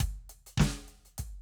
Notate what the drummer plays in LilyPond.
\new DrumStaff \drummode { \time 4/4 \tempo 4 = 100 <bd hh>8 hh16 hh16 <bd sn>8 hh16 hh16 <hh bd>4 r4 | }